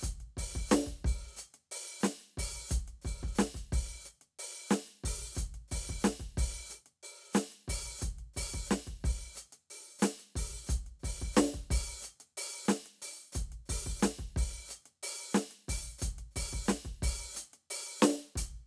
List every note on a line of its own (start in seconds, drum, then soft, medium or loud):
0.01 closed hi-hat loud
0.01 kick medium
0.01 hi-hat pedal medium
0.21 closed hi-hat soft
0.38 open hi-hat loud
0.38 kick medium
0.56 kick medium
0.69 closed hi-hat loud
0.69 snare loud
0.69 hi-hat pedal medium
0.87 kick soft
0.87 closed hi-hat soft
1.05 open hi-hat medium
1.05 kick medium
1.37 closed hi-hat medium
1.37 hi-hat pedal medium
1.55 closed hi-hat soft
1.72 open hi-hat loud
2.01 closed hi-hat loud
2.01 snare loud
2.01 hi-hat pedal medium
2.22 closed hi-hat soft
2.38 open hi-hat loud
2.38 kick medium
2.70 closed hi-hat loud
2.70 kick medium
2.70 hi-hat pedal medium
2.88 closed hi-hat soft
3.02 kick medium
3.02 hi-hat pedal soft
3.06 open hi-hat medium
3.24 kick medium
3.36 closed hi-hat medium
3.36 snare loud
3.36 hi-hat pedal medium
3.55 closed hi-hat medium
3.55 kick soft
3.73 open hi-hat loud
3.73 kick medium
4.06 open hi-hat medium
4.06 hi-hat pedal medium
4.22 closed hi-hat soft
4.39 open hi-hat loud
4.70 closed hi-hat medium
4.70 snare loud
4.70 hi-hat pedal medium
4.88 closed hi-hat soft
5.04 open hi-hat loud
5.04 kick medium
5.35 closed hi-hat medium
5.35 kick medium
5.35 hi-hat pedal medium
5.55 closed hi-hat soft
5.68 open hi-hat loud
5.68 kick medium
5.68 hi-hat pedal soft
5.90 kick medium
6.02 closed hi-hat medium
6.02 snare loud
6.02 hi-hat pedal medium
6.20 kick soft
6.20 closed hi-hat soft
6.38 open hi-hat loud
6.38 kick medium
6.70 open hi-hat medium
6.70 hi-hat pedal medium
6.87 closed hi-hat soft
7.03 open hi-hat medium
7.34 closed hi-hat loud
7.34 snare loud
7.34 hi-hat pedal medium
7.53 closed hi-hat soft
7.68 open hi-hat loud
7.68 kick medium
7.99 closed hi-hat medium
7.99 kick medium
7.99 hi-hat pedal medium
8.19 closed hi-hat soft
8.34 open hi-hat loud
8.34 kick medium
8.34 hi-hat pedal soft
8.54 kick medium
8.68 closed hi-hat medium
8.68 snare loud
8.68 hi-hat pedal medium
8.88 kick soft
8.88 closed hi-hat soft
9.00 hi-hat pedal soft
9.05 open hi-hat medium
9.05 kick medium
9.36 closed hi-hat medium
9.36 hi-hat pedal medium
9.53 closed hi-hat medium
9.71 open hi-hat medium
10.00 closed hi-hat loud
10.00 snare loud
10.00 hi-hat pedal medium
10.19 closed hi-hat soft
10.36 open hi-hat loud
10.36 kick medium
10.67 closed hi-hat loud
10.67 kick medium
10.67 hi-hat pedal medium
10.87 closed hi-hat soft
11.00 hi-hat pedal soft
11.04 open hi-hat loud
11.04 kick medium
11.22 kick medium
11.34 closed hi-hat medium
11.34 snare loud
11.34 hi-hat pedal medium
11.54 kick medium
11.54 closed hi-hat soft
11.71 open hi-hat loud
11.71 kick medium
12.03 closed hi-hat medium
12.03 hi-hat pedal medium
12.21 closed hi-hat medium
12.38 open hi-hat loud
12.65 snare loud
12.65 hi-hat pedal medium
12.69 closed hi-hat loud
12.86 closed hi-hat soft
12.99 open hi-hat loud
12.99 hi-hat pedal soft
13.33 closed hi-hat medium
13.33 kick medium
13.33 hi-hat pedal medium
13.53 closed hi-hat soft
13.66 open hi-hat loud
13.66 kick medium
13.66 hi-hat pedal soft
13.87 kick medium
14.00 closed hi-hat loud
14.00 snare loud
14.00 hi-hat pedal medium
14.19 kick medium
14.19 closed hi-hat soft
14.37 open hi-hat loud
14.37 kick medium
14.69 closed hi-hat medium
14.69 hi-hat pedal medium
14.86 closed hi-hat soft
15.03 open hi-hat loud
15.33 closed hi-hat loud
15.33 snare loud
15.33 hi-hat pedal medium
15.52 closed hi-hat soft
15.68 open hi-hat loud
15.68 kick medium
15.68 hi-hat pedal soft
15.99 closed hi-hat loud
15.99 kick medium
15.99 hi-hat pedal medium
16.19 closed hi-hat soft
16.32 hi-hat pedal soft
16.37 open hi-hat loud
16.37 kick medium
16.53 kick medium
16.66 closed hi-hat loud
16.66 snare loud
16.66 hi-hat pedal medium
16.86 kick medium
16.86 closed hi-hat soft
17.03 open hi-hat loud
17.03 kick medium
17.35 closed hi-hat loud
17.35 hi-hat pedal medium
17.54 closed hi-hat soft
17.71 open hi-hat loud
18.00 closed hi-hat loud
18.00 snare loud
18.00 hi-hat pedal medium
18.20 closed hi-hat soft
18.36 open hi-hat loud
18.36 kick medium